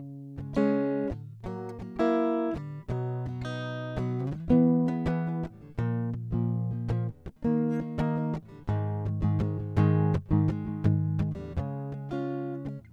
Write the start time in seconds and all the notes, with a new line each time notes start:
0.00 C#3
0.39 C#3 G#3 C#4
0.58 G#3 C#4
1.12 A2
1.45 F#3 A#3
1.81 F#3 A#3
2.00 A#3 E4
2.56 D3 G3
2.90 B2 F#3 B3
3.27 B2 F#3
3.43 B3 D#4
3.97 B2 F#3 B3
4.51 E3 B3
4.87 E3 B3 E4 G#4
5.07 E3 B3 E4 G#4
5.28 B3 E4
5.79 A#2 F3
6.15 A#2 F3
6.32 A#2 F3
6.72 A#2 F3
6.89 A#2 F3
7.46 D#3 A#3
7.81 D#3 A#3
7.99 D#3 A#3 D#4
8.17 A#3 D#4
8.50 D3 G3
8.69 G#2 D#3
9.07 G#2 D#3
9.23 G#2 D#3
9.40 G#2 D#3 G#3
9.60 G#2 D#3
9.78 G#2 D#3 G#3
10.32 G#2 D#3
10.49 G#2 D#3 G#3
10.66 G#2 D#3
10.86 G#2 D#3 G#3
11.20 G#2 D#3
11.33 E2 A2 G3
11.37 D3
11.59 C#3 G#3
11.93 C#3 G#3
12.12 C#3 G#3 C#4 F4
12.67 G#3 C#4